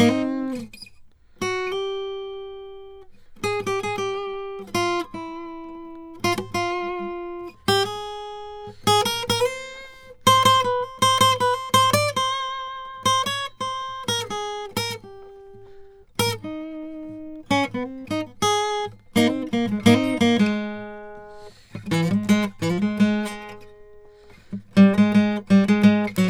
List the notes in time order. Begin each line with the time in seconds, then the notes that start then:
0.00 A#3 D#4
0.10 C4
1.43 F#4
1.73 G4
3.45 G#4
3.68 G4
3.85 G#4
3.97 G4
4.75 F4
5.15 E4
6.25 F4
6.39 F#4
6.56 F4
7.69 G4
7.84 G#4
8.88 G#4
9.02 A#4
9.31 A#4
9.41 C5
10.28 C5
10.47 C5
10.62 B4
10.84 C5
11.03 C5
11.22 C5
11.42 B4
11.55 C5
11.75 C5
11.95 D5
12.18 C5
13.07 C5
13.23 C#5
13.28 C#5
13.62 C5
14.09 A#4
14.32 G#4
14.78 A#4
14.93 A4
16.46 D#4
17.52 C#4
17.76 B3
17.85 C4
18.12 D#4
18.43 G#4
19.17 A#3 D#4
19.28 C4
19.54 A#3
19.67 G#3
19.80 D3
19.87 A#3 D#4
19.96 C4
20.19 A#3 D#4
20.41 G#3
21.92 E3
22.13 G#3
22.30 G#3
22.63 F3
22.84 G#3
23.01 G#3
24.78 G3
24.99 G#3
25.16 G#3
25.51 G3
25.70 G#3
25.85 G#3
26.19 F#3